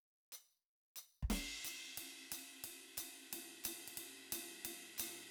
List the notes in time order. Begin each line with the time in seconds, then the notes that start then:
0.32 hi-hat pedal
0.96 hi-hat pedal
1.22 kick
1.30 snare, ride
1.65 hi-hat pedal, ride
1.97 ride
2.32 hi-hat pedal, ride
2.64 ride
2.97 hi-hat pedal, ride
3.33 ride
3.64 hi-hat pedal, ride
3.88 ride
3.97 ride
4.32 hi-hat pedal, ride
4.65 ride
4.98 hi-hat pedal, ride